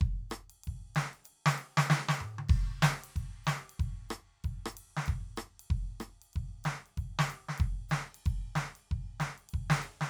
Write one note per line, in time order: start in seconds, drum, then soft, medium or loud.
0.01 kick medium
0.30 cross-stick medium
0.30 hi-hat pedal medium
0.50 ride soft
0.64 kick soft
0.64 ride soft
0.95 snare loud
0.95 ride soft
1.00 hi-hat pedal medium
1.13 ride soft
1.24 hi-hat pedal medium
1.24 ride soft
1.46 snare loud
1.51 hi-hat pedal medium
1.58 ride soft
1.77 snare loud
1.83 hi-hat pedal soft
1.90 snare loud
2.09 snare medium
2.14 hi-hat pedal soft
2.21 mid tom medium
2.39 high tom medium
2.49 kick loud
2.49 crash soft
2.73 kick soft
2.82 snare loud
2.82 ride medium
3.04 ride medium
3.16 kick medium
3.16 ride soft
3.44 snare medium
3.44 hi-hat pedal soft
3.44 ride soft
3.70 ride soft
3.79 kick medium
3.79 ride soft
4.09 cross-stick medium
4.09 hi-hat pedal soft
4.44 kick medium
4.44 ride soft
4.59 kick soft
4.66 cross-stick medium
4.71 hi-hat pedal medium
4.77 ride medium
4.97 snare medium
5.06 kick medium
5.06 ride soft
5.36 cross-stick medium
5.36 hi-hat pedal medium
5.60 ride soft
5.70 kick medium
6.00 cross-stick medium
6.00 hi-hat pedal medium
6.00 ride soft
6.22 ride soft
6.33 kick medium
6.33 ride soft
6.64 snare medium
6.64 hi-hat pedal medium
6.64 ride soft
6.86 ride soft
6.97 kick soft
6.97 ride soft
7.19 snare loud
7.19 hi-hat pedal medium
7.30 ride soft
7.49 snare medium
7.58 kick medium
7.58 ride soft
7.89 snare loud
7.89 hi-hat pedal medium
7.89 ride soft
8.15 ride soft
8.26 kick medium
8.26 ride soft
8.56 snare loud
8.56 hi-hat pedal medium
8.56 ride soft
8.75 ride soft
8.91 kick medium
9.20 snare medium
9.20 hi-hat pedal medium
9.20 ride soft
9.38 ride soft
9.49 ride soft
9.54 kick medium
9.70 snare loud
9.75 hi-hat pedal medium
9.82 ride soft
10.01 snare medium